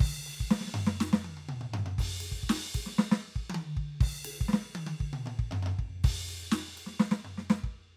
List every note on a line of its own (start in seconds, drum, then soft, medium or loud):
0.01 kick loud
0.01 crash loud
0.26 ride medium
0.41 kick medium
0.52 snare loud
0.52 ride medium
0.61 snare medium
0.68 snare medium
0.75 floor tom loud
0.88 snare loud
1.01 snare loud
1.14 snare loud
1.26 high tom medium
1.38 high tom soft
1.50 mid tom loud
1.62 mid tom medium
1.75 floor tom loud
1.87 floor tom medium
1.99 kick loud
1.99 ride loud
2.21 ride medium
2.33 kick medium
2.44 kick medium
2.50 snare loud
2.50 ride loud
2.75 kick medium
2.75 ride loud
2.87 snare medium
2.93 snare soft
2.99 snare loud
3.13 snare loud
3.37 kick medium
3.51 high tom loud
3.56 high tom loud
3.78 kick medium
4.02 kick loud
4.02 crash loud
4.26 ride loud
4.42 kick medium
4.49 snare medium
4.54 snare loud
4.76 high tom loud
4.88 high tom loud
5.01 kick medium
5.14 mid tom loud
5.27 mid tom medium
5.27 mid tom loud
5.40 kick medium
5.52 floor tom medium
5.52 floor tom loud
5.64 floor tom medium
5.67 floor tom loud
5.80 kick medium
6.05 kick loud
6.05 ride loud
6.30 ride medium
6.53 snare loud
6.53 ride medium
6.78 ride medium
6.87 snare medium
6.93 snare soft
7.01 snare loud
7.12 snare loud
7.26 floor tom medium
7.39 snare medium
7.51 snare loud
7.65 kick medium